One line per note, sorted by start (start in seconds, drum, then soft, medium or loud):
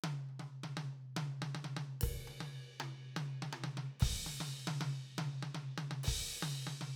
0.04 high tom loud
0.29 high tom soft
0.39 high tom medium
0.63 high tom medium
0.77 high tom loud
1.16 high tom loud
1.42 high tom loud
1.54 high tom loud
1.64 high tom medium
1.76 high tom loud
2.01 kick medium
2.01 ride loud
2.27 high tom medium
2.40 high tom medium
2.67 high tom soft
2.80 high tom medium
3.16 high tom loud
3.42 high tom loud
3.52 high tom medium
3.64 high tom loud
3.77 high tom medium
4.00 kick medium
4.00 ride loud
4.26 high tom medium
4.40 high tom loud
4.67 high tom loud
4.81 high tom loud
5.18 high tom loud
5.42 high tom medium
5.54 high tom loud
5.78 high tom loud
5.91 high tom medium
6.03 ride loud
6.07 kick medium
6.42 high tom loud
6.67 high tom medium
6.81 high tom medium